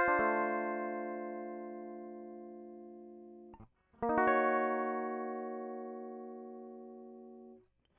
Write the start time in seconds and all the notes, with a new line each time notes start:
0.00 F4
0.09 D4
0.20 A3
4.03 A#3
4.10 D#4
4.18 F#4